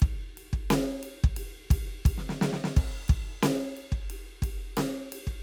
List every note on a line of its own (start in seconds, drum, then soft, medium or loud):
0.01 kick loud
0.01 ride medium
0.38 ride medium
0.54 kick medium
0.71 snare loud
0.71 ride loud
1.04 ride loud
1.24 kick loud
1.37 ride loud
1.71 kick loud
1.71 ride loud
2.06 kick loud
2.06 ride loud
2.18 snare medium
2.30 snare medium
2.42 snare loud
2.54 snare medium
2.65 snare loud
2.77 kick loud
2.77 crash medium
3.09 kick loud
3.09 ride medium
3.43 snare loud
3.43 ride loud
3.78 ride medium
3.93 kick medium
3.93 snare soft
4.11 ride loud
4.43 kick loud
4.43 ride loud
4.78 snare loud
4.78 ride loud
5.13 ride loud
5.28 kick medium